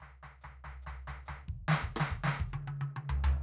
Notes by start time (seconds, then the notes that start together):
0.00 snare, floor tom, hi-hat pedal
0.23 snare, floor tom
0.41 snare, floor tom, hi-hat pedal
0.64 snare, floor tom
0.82 hi-hat pedal
0.86 snare, floor tom
1.07 snare, floor tom
1.25 snare, floor tom, hi-hat pedal
1.48 kick
1.68 snare
1.71 snare
1.83 kick
1.96 cross-stick, snare
2.10 kick
2.24 snare
2.27 snare
2.40 kick
2.53 high tom
2.67 high tom
2.81 high tom
2.96 high tom
3.09 floor tom
3.24 floor tom